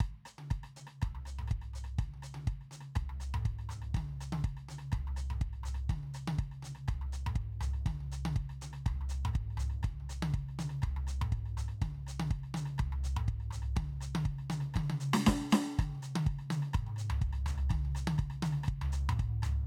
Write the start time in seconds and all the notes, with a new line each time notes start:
0.01 kick, cross-stick
0.25 cross-stick, hi-hat pedal
0.38 high tom
0.50 kick, cross-stick
0.63 cross-stick
0.76 hi-hat pedal, high tom
0.87 cross-stick
1.02 kick, cross-stick, floor tom
1.15 floor tom
1.25 cross-stick, hi-hat pedal
1.39 mid tom
1.48 kick, cross-stick
1.62 cross-stick
1.73 floor tom, hi-hat pedal
1.84 cross-stick
1.98 kick, cross-stick, high tom
2.14 high tom
2.17 high tom
2.22 cross-stick, hi-hat pedal
2.34 high tom
2.47 kick, cross-stick
2.61 cross-stick
2.71 hi-hat pedal, high tom
2.81 cross-stick
2.95 kick, cross-stick, floor tom
3.09 floor tom
3.20 cross-stick, hi-hat pedal
3.34 mid tom
3.45 kick, cross-stick
3.59 cross-stick
3.69 floor tom, hi-hat pedal
3.82 cross-stick
3.94 kick, cross-stick, high tom
4.08 high tom
4.11 high tom
4.16 high tom
4.20 cross-stick, hi-hat pedal
4.32 high tom
4.44 kick, cross-stick
4.57 cross-stick
4.69 hi-hat pedal, high tom
4.78 cross-stick
4.92 kick, cross-stick, floor tom
5.07 floor tom
5.16 cross-stick, hi-hat pedal
5.30 mid tom
5.41 kick, cross-stick
5.53 cross-stick
5.63 floor tom, hi-hat pedal
5.74 cross-stick
5.89 kick, cross-stick, high tom
6.03 high tom
6.07 high tom
6.14 cross-stick, hi-hat pedal
6.27 high tom
6.38 kick, cross-stick
6.51 cross-stick
6.62 hi-hat pedal, high tom
6.75 cross-stick
6.88 kick, cross-stick, floor tom
7.01 floor tom
7.12 cross-stick, hi-hat pedal
7.26 mid tom
7.35 kick, cross-stick
7.52 cross-stick
7.61 floor tom, hi-hat pedal
7.73 cross-stick
7.86 kick, cross-stick, high tom
8.00 high tom
8.04 high tom
8.12 cross-stick, hi-hat pedal
8.25 high tom
8.36 kick, cross-stick
8.49 cross-stick
8.61 hi-hat pedal, high tom
8.73 cross-stick
8.86 kick, cross-stick, floor tom
9.01 floor tom
9.09 cross-stick, hi-hat pedal
9.25 mid tom
9.34 kick, cross-stick
9.50 cross-stick
9.57 floor tom, hi-hat pedal
9.70 cross-stick
9.82 kick, cross-stick, hi-hat pedal, high tom
9.91 high tom
10.00 high tom
10.05 cross-stick, high tom
10.09 hi-hat pedal
10.22 high tom
10.34 kick, cross-stick
10.49 cross-stick
10.59 hi-hat pedal, high tom
10.69 cross-stick
10.82 kick, cross-stick, floor tom
10.96 floor tom
11.07 cross-stick, hi-hat pedal
11.21 mid tom
11.32 kick, cross-stick
11.46 cross-stick
11.57 floor tom, hi-hat pedal
11.68 cross-stick
11.81 kick, cross-stick, hi-hat pedal, high tom
11.94 high tom
12.07 cross-stick, hi-hat pedal
12.20 high tom
12.31 kick, cross-stick
12.43 cross-stick
12.54 hi-hat pedal, high tom
12.65 cross-stick
12.78 kick, cross-stick, floor tom
12.92 floor tom
13.03 cross-stick, hi-hat pedal
13.16 mid tom
13.28 kick, cross-stick
13.40 cross-stick
13.51 floor tom, hi-hat pedal
13.62 cross-stick
13.76 kick, cross-stick, high tom
13.89 high tom
13.93 high tom
14.01 cross-stick, hi-hat pedal
14.15 high tom
14.25 kick, cross-stick
14.38 cross-stick
14.50 hi-hat pedal, high tom
14.60 cross-stick
14.74 kick, cross-stick, high tom
14.90 high tom
15.00 cross-stick, hi-hat pedal
15.13 snare
15.26 kick, snare
15.41 snare
15.50 snare, hi-hat pedal
15.79 kick, cross-stick, high tom
15.95 high tom
15.98 high tom
16.02 cross-stick, hi-hat pedal
16.15 high tom
16.25 kick, cross-stick, hi-hat pedal
16.39 cross-stick
16.50 hi-hat pedal, high tom
16.62 cross-stick
16.73 kick, cross-stick, hi-hat pedal, mid tom
16.86 mid tom
16.89 mid tom
16.96 cross-stick, hi-hat pedal
17.10 floor tom
17.21 kick, hi-hat pedal
17.33 cross-stick
17.46 floor tom, hi-hat pedal
17.58 cross-stick
17.70 kick, cross-stick, hi-hat pedal, high tom
17.85 high tom
17.95 cross-stick, hi-hat pedal
18.07 high tom
18.18 kick, cross-stick
18.30 cross-stick
18.42 hi-hat pedal, high tom
18.52 cross-stick
18.63 cross-stick, hi-hat pedal
18.68 kick
18.81 floor tom
18.92 cross-stick, hi-hat pedal
19.09 mid tom
19.15 hi-hat pedal
19.19 kick, cross-stick
19.42 cross-stick, floor tom, hi-hat pedal